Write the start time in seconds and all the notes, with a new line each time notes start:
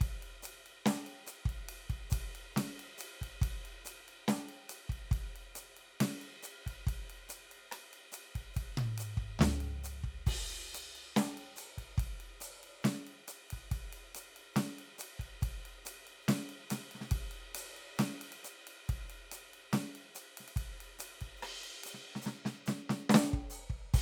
0.01 kick, hi-hat pedal, ride
0.23 ride
0.43 hi-hat pedal, ride
0.66 ride
0.86 snare, ride
1.07 ride
1.27 hi-hat pedal, ride
1.46 kick, ride
1.69 ride
1.90 kick, ride
2.10 kick, hi-hat pedal, ride
2.35 ride
2.53 snare, hi-hat pedal
2.58 ride
2.80 ride
2.98 hi-hat pedal, ride
3.22 kick, ride
3.42 kick, ride
3.65 ride
3.85 hi-hat pedal, ride
4.08 ride
4.28 snare, ride
4.49 ride
4.69 hi-hat pedal, ride
4.89 kick, ride
5.11 kick, ride
5.36 ride
5.55 hi-hat pedal, ride
5.77 ride
6.01 snare, ride
6.22 ride
6.43 hi-hat pedal, ride
6.67 kick, ride
6.87 kick, hi-hat pedal, ride
7.10 ride
7.29 hi-hat pedal, ride
7.52 ride
7.69 cross-stick, hi-hat pedal, ride
7.93 ride
8.12 hi-hat pedal, ride
8.35 kick, ride
8.54 kick, hi-hat pedal, ride
8.77 high tom, ride
8.98 hi-hat pedal, ride
9.17 kick
9.39 snare, floor tom
9.61 ride
9.84 hi-hat pedal, ride
10.04 kick
10.27 kick, hi-hat pedal, crash, ride
10.50 ride
10.74 hi-hat pedal, ride
10.96 ride
11.16 snare, hi-hat pedal, ride
11.37 ride
11.56 hi-hat pedal, ride
11.78 kick, ride
11.97 kick, hi-hat pedal, ride
12.20 ride
12.41 hi-hat pedal, ride
12.63 ride
12.83 snare, hi-hat pedal, ride
13.07 ride
13.28 hi-hat pedal, ride
13.48 hi-hat pedal, ride
13.53 kick
13.72 kick, hi-hat pedal, ride
13.93 ride
14.15 hi-hat pedal, ride
14.36 ride
14.54 snare, hi-hat pedal, ride
14.79 ride
14.99 hi-hat pedal, ride
15.19 kick, ride
15.41 kick, hi-hat pedal, ride
15.65 ride
15.85 hi-hat pedal, ride
16.07 ride
16.22 hi-hat pedal
16.28 snare, ride
16.49 ride
16.70 snare, hi-hat pedal, ride
16.91 snare, ride
17.01 snare
17.04 snare
17.10 kick, hi-hat pedal, ride
17.31 ride
17.55 hi-hat pedal, ride
17.77 ride
17.96 snare, hi-hat pedal, ride
18.22 ride
18.32 ride
18.44 hi-hat pedal, ride
18.67 ride
18.87 kick, hi-hat pedal, ride
19.08 hi-hat pedal, ride
19.32 hi-hat pedal, ride
19.54 ride
19.72 snare, hi-hat pedal, ride
19.95 ride
20.15 hi-hat pedal, ride
20.37 snare, ride
20.48 ride
20.56 kick, hi-hat pedal, ride
20.81 ride
20.99 hi-hat pedal, ride
21.21 kick, ride
21.37 hi-hat pedal
21.43 cross-stick, ride
21.64 ride
21.84 hi-hat pedal, ride
21.94 snare
22.15 snare
22.22 hi-hat pedal
22.26 snare
22.45 snare
22.66 snare, hi-hat pedal
22.90 snare
23.10 snare
23.14 snare
23.33 kick
23.50 hi-hat pedal
23.70 kick
23.94 open hi-hat, kick, ride